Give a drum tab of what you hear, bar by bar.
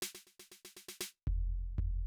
HH |p---------------|
SD |oggggggoo-------|
FT |----------o---o-|
BD |----------o---o-|